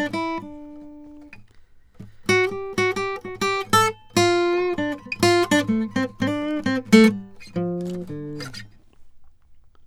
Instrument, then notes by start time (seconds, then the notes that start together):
acoustic guitar
0.00 D4
0.15 E4
0.44 D4
2.30 F#4
2.47 G4
2.79 F#4
2.98 G4
3.27 F#4
3.43 G4
3.75 A4
4.18 F4
4.80 D4
5.14 C4
5.24 F4
5.53 D4
5.70 A3
5.97 C4
6.23 C#4
6.34 D4
6.67 C4
6.94 A3
7.05 A3
7.58 F3
8.11 D3